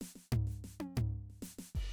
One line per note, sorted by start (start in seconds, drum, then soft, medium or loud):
0.00 snare soft
0.00 hi-hat pedal soft
0.15 snare soft
0.32 floor tom loud
0.47 snare soft
0.47 hi-hat pedal soft
0.64 snare soft
0.80 closed hi-hat soft
0.80 high tom medium
0.95 floor tom medium
0.95 hi-hat pedal soft
1.30 snare soft
1.42 snare soft
1.42 hi-hat pedal medium
1.58 snare soft
1.75 kick soft
1.75 ride medium